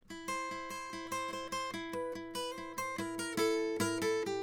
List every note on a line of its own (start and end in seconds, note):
0.11 0.29 E4
0.29 0.52 E4
0.29 0.71 C5
0.53 0.71 E4
0.71 0.92 E4
0.71 0.84 C5
0.84 1.10 C5
0.94 1.13 E4
1.13 1.29 E4
1.13 1.31 C5
1.30 1.73 E4
1.30 1.50 C5
1.53 1.74 C5
1.75 1.95 E4
1.95 2.15 E4
1.95 2.14 B4
2.14 2.36 E4
2.14 2.33 B4
2.36 2.57 E4
2.36 2.52 B4
2.52 2.75 C5
2.59 2.86 E4
2.79 2.97 C5
2.97 3.20 E4
2.97 3.18 A#4
3.20 3.38 E4
3.20 3.36 A#4
3.38 3.80 E4
3.38 3.79 A4
3.81 4.03 E4
3.81 4.01 A#4
4.03 4.25 E4
4.03 4.31 A4
4.28 4.43 G4